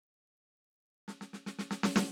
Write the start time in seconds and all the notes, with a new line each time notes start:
1.08 snare
1.21 snare
1.33 snare
1.46 snare
1.59 snare
1.71 snare
1.83 snare
1.96 snare